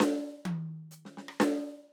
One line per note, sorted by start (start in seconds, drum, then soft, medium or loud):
0.00 snare loud
0.46 closed hi-hat soft
0.46 high tom loud
0.91 hi-hat pedal medium
1.05 snare soft
1.18 snare medium
1.28 cross-stick medium
1.40 snare loud